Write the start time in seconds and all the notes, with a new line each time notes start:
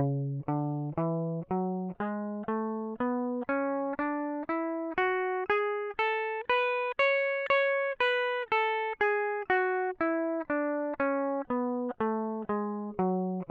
0.01 C#3
0.49 D3
0.98 E3
1.51 F#3
2.01 G#3
2.49 A3
3.01 B3
3.49 C#4
3.99 D4
4.49 E4
4.98 F#4
5.50 G#4
5.99 A4
6.50 B4
6.99 C#5
7.50 C#5
8.01 B4
8.52 A4
9.01 G#4
9.50 F#4
10.01 E4
10.50 D4
11.00 C#4
11.51 B3
12.01 A3
12.50 G#3
12.99 F#3